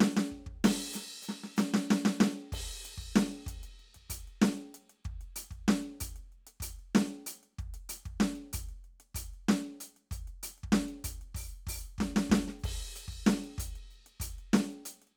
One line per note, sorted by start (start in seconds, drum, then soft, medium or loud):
0.01 snare loud
0.17 snare loud
0.32 kick soft
0.47 kick soft
0.65 snare loud
0.65 crash loud
0.93 snare soft
0.93 hi-hat pedal loud
1.23 hi-hat pedal medium
1.29 snare medium
1.44 snare soft
1.57 snare loud
1.57 hi-hat pedal medium
1.74 snare loud
1.91 snare loud
2.06 snare loud
2.11 hi-hat pedal soft
2.21 snare loud
2.53 kick medium
2.53 crash loud
2.68 closed hi-hat soft
2.86 closed hi-hat medium
2.98 kick soft
2.98 closed hi-hat soft
3.16 snare loud
3.32 closed hi-hat soft
3.47 kick medium
3.47 closed hi-hat medium
3.64 closed hi-hat medium
3.80 closed hi-hat soft
3.95 kick soft
3.95 closed hi-hat soft
4.10 closed hi-hat loud
4.10 kick soft
4.28 closed hi-hat soft
4.42 snare loud
4.57 closed hi-hat soft
4.75 closed hi-hat medium
4.90 closed hi-hat soft
5.05 kick medium
5.05 closed hi-hat soft
5.21 closed hi-hat soft
5.36 closed hi-hat loud
5.51 kick soft
5.51 closed hi-hat soft
5.69 snare loud
5.83 closed hi-hat soft
6.01 closed hi-hat loud
6.01 kick medium
6.16 closed hi-hat soft
6.33 closed hi-hat soft
6.47 closed hi-hat medium
6.61 closed hi-hat loud
6.61 kick soft
6.79 closed hi-hat soft
6.95 snare loud
7.09 closed hi-hat soft
7.27 closed hi-hat loud
7.44 closed hi-hat soft
7.59 kick medium
7.59 closed hi-hat soft
7.74 closed hi-hat medium
7.90 closed hi-hat loud
8.06 kick soft
8.06 closed hi-hat soft
8.21 snare loud
8.36 closed hi-hat soft
8.54 closed hi-hat loud
8.54 kick medium
8.69 closed hi-hat soft
8.85 open hi-hat soft
9.01 closed hi-hat soft
9.15 closed hi-hat loud
9.15 kick medium
9.34 closed hi-hat soft
9.49 snare loud
9.65 closed hi-hat soft
9.81 closed hi-hat loud
9.97 closed hi-hat soft
10.12 closed hi-hat medium
10.12 kick medium
10.28 closed hi-hat soft
10.44 closed hi-hat loud
10.58 closed hi-hat soft
10.64 kick soft
10.73 snare loud
10.89 closed hi-hat soft
11.05 closed hi-hat loud
11.05 kick medium
11.22 closed hi-hat soft
11.35 open hi-hat loud
11.35 kick medium
11.57 open hi-hat soft
11.67 open hi-hat loud
11.67 kick medium
11.99 kick soft
11.99 snare medium
11.99 hi-hat pedal soft
12.17 snare loud
12.30 kick soft
12.30 snare loud
12.48 snare soft
12.60 hi-hat pedal soft
12.64 kick medium
12.64 crash medium
12.81 closed hi-hat soft
12.96 closed hi-hat medium
13.08 kick soft
13.13 closed hi-hat soft
13.27 snare loud
13.44 closed hi-hat soft
13.59 closed hi-hat loud
13.59 kick medium
13.76 closed hi-hat soft
13.91 closed hi-hat soft
14.07 closed hi-hat soft
14.20 closed hi-hat loud
14.20 kick medium
14.39 closed hi-hat soft
14.54 snare loud
14.71 closed hi-hat soft
14.86 closed hi-hat loud
15.02 closed hi-hat soft
15.08 closed hi-hat soft